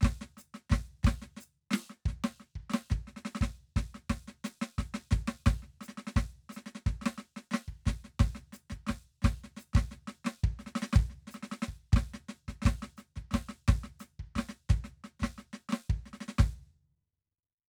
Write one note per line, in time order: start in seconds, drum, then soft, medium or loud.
0.01 kick loud
0.01 snare medium
0.05 snare medium
0.21 snare soft
0.37 snare soft
0.37 hi-hat pedal medium
0.54 snare soft
0.70 kick loud
0.70 snare soft
0.72 snare medium
1.03 kick loud
1.03 snare soft
1.07 snare loud
1.22 snare soft
1.37 snare soft
1.37 hi-hat pedal medium
1.71 snare medium
1.73 snare loud
1.90 snare soft
2.06 kick medium
2.06 snare soft
2.24 snare medium
2.40 snare soft
2.55 kick soft
2.70 snare medium
2.74 snare loud
2.90 kick medium
2.90 snare soft
3.07 snare soft
3.16 snare soft
3.25 snare medium
3.35 snare medium
3.41 kick medium
3.41 snare medium
3.76 kick medium
3.76 snare medium
3.94 snare soft
4.10 kick medium
4.10 snare medium
4.28 snare soft
4.44 snare medium
4.44 hi-hat pedal medium
4.62 snare medium
4.78 kick medium
4.78 snare medium
4.94 snare medium
5.11 kick loud
5.11 snare medium
5.28 snare medium
5.46 kick loud
5.46 snare loud
5.62 snare soft
5.81 snare soft
5.81 hi-hat pedal medium
5.88 snare soft
5.98 snare soft
6.07 snare medium
6.16 kick medium
6.16 snare medium
6.49 snare soft
6.49 hi-hat pedal medium
6.57 snare soft
6.66 snare soft
6.75 snare soft
6.86 kick medium
6.86 snare soft
7.01 snare soft
7.06 snare loud
7.18 snare soft
7.36 snare soft
7.51 snare medium
7.54 snare medium
7.68 kick soft
7.86 kick medium
7.86 snare soft
7.87 snare medium
8.04 snare soft
8.20 kick loud
8.20 snare medium
8.35 snare soft
8.53 snare soft
8.53 hi-hat pedal medium
8.70 kick soft
8.70 snare soft
8.87 snare medium
8.89 kick soft
8.89 snare medium
9.22 kick loud
9.22 snare soft
9.25 snare medium
9.44 snare soft
9.57 snare soft
9.57 hi-hat pedal medium
9.73 kick loud
9.73 snare soft
9.77 snare medium
9.91 snare soft
10.07 snare medium
10.25 snare soft
10.26 snare medium
10.44 kick medium
10.59 snare soft
10.66 snare soft
10.75 snare medium
10.82 snare medium
10.93 kick loud
10.93 snare medium
11.10 snare soft
11.27 snare soft
11.27 hi-hat pedal medium
11.34 snare soft
11.43 snare medium
11.52 snare medium
11.62 snare medium
11.68 kick soft
11.92 kick loud
11.92 snare soft
11.96 snare medium
12.14 snare soft
12.29 snare medium
12.48 kick soft
12.48 snare soft
12.62 kick loud
12.62 snare medium
12.66 snare loud
12.82 snare medium
12.97 snare soft
12.97 hi-hat pedal soft
13.16 kick soft
13.16 snare soft
13.31 kick medium
13.31 snare soft
13.34 snare loud
13.49 snare soft
13.68 kick loud
13.68 snare medium
13.84 snare soft
14.00 snare soft
14.00 hi-hat pedal medium
14.19 kick soft
14.35 kick soft
14.35 snare medium
14.38 snare medium
14.49 snare soft
14.69 kick loud
14.69 snare medium
14.84 snare soft
15.04 snare soft
15.20 kick medium
15.20 snare soft
15.23 snare medium
15.38 snare soft
15.53 snare soft
15.69 snare medium
15.73 snare medium
15.90 kick medium
16.06 snare soft
16.13 snare soft
16.21 snare medium
16.28 snare medium
16.38 kick loud
16.38 snare medium